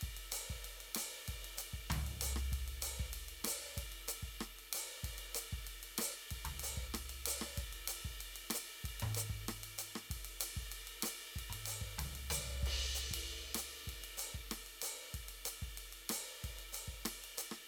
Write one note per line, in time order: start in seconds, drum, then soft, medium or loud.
0.01 kick medium
0.01 ride medium
0.17 ride medium
0.31 hi-hat pedal medium
0.31 ride loud
0.50 kick medium
0.64 ride medium
0.80 ride medium
0.95 cross-stick medium
0.95 hi-hat pedal medium
0.95 ride loud
1.28 kick medium
1.28 ride medium
1.44 ride medium
1.57 hi-hat pedal medium
1.57 ride medium
1.73 kick soft
1.90 floor tom loud
1.90 ride medium
2.06 ride medium
2.21 hi-hat pedal loud
2.21 ride loud
2.36 cross-stick medium
2.52 kick medium
2.52 ride medium
2.68 ride medium
2.82 hi-hat pedal medium
2.82 ride loud
2.99 kick medium
3.13 ride medium
3.28 ride medium
3.44 cross-stick medium
3.44 hi-hat pedal loud
3.44 ride loud
3.77 kick medium
3.77 ride medium
3.92 ride medium
4.08 hi-hat pedal loud
4.08 ride loud
4.22 kick soft
4.41 cross-stick medium
4.41 ride soft
4.59 ride soft
4.73 hi-hat pedal medium
4.73 ride loud
5.03 kick medium
5.03 ride medium
5.18 ride medium
5.35 hi-hat pedal loud
5.35 ride loud
5.52 kick medium
5.67 ride medium
5.83 ride medium
5.98 cross-stick medium
5.98 hi-hat pedal loud
5.98 ride loud
6.31 kick soft
6.31 ride medium
6.45 floor tom medium
6.45 ride medium
6.59 hi-hat pedal loud
6.59 ride medium
6.77 kick medium
6.94 cross-stick medium
6.94 ride medium
7.09 ride medium
7.26 hi-hat pedal loud
7.26 ride loud
7.41 cross-stick medium
7.57 kick medium
7.57 ride medium
7.73 ride medium
7.87 hi-hat pedal medium
7.87 ride loud
8.05 kick medium
8.21 ride medium
8.36 ride medium
8.50 cross-stick medium
8.50 ride loud
8.54 hi-hat pedal loud
8.84 kick medium
8.84 ride medium
9.00 high tom medium
9.00 ride medium
9.15 hi-hat pedal loud
9.15 ride medium
9.29 kick medium
9.48 cross-stick medium
9.48 ride medium
9.63 ride medium
9.78 hi-hat pedal medium
9.78 ride medium
9.95 cross-stick medium
10.10 kick medium
10.10 ride medium
10.25 ride medium
10.40 hi-hat pedal medium
10.40 ride loud
10.56 kick medium
10.72 ride medium
10.87 ride medium
11.02 cross-stick medium
11.02 hi-hat pedal loud
11.02 ride loud
11.36 kick soft
11.36 ride medium
11.50 high tom medium
11.50 ride medium
11.66 hi-hat pedal medium
11.66 ride medium
11.81 kick soft
11.98 floor tom medium
11.98 ride loud
12.15 ride medium
12.30 floor tom medium
12.30 hi-hat pedal loud
12.30 ride bell loud
12.63 kick medium
12.63 ride loud
12.95 hi-hat pedal medium
13.11 kick soft
13.11 ride loud
13.54 cross-stick medium
13.54 hi-hat pedal medium
13.54 ride loud
13.87 kick soft
13.87 ride medium
14.04 ride medium
14.17 hi-hat pedal medium
14.17 ride medium
14.34 kick soft
14.43 kick soft
14.51 cross-stick medium
14.51 ride medium
14.66 ride medium
14.82 hi-hat pedal loud
14.82 ride loud
15.14 kick soft
15.14 ride medium
15.28 ride medium
15.45 hi-hat pedal loud
15.45 ride loud
15.62 kick medium
15.77 ride medium
15.92 ride medium
16.09 cross-stick medium
16.09 hi-hat pedal loud
16.09 ride loud
16.44 kick soft
16.44 ride medium
16.59 ride medium
16.72 hi-hat pedal medium
16.72 ride medium
16.88 kick soft
17.05 cross-stick medium
17.05 ride loud
17.24 ride medium
17.37 hi-hat pedal loud
17.37 ride medium
17.51 cross-stick medium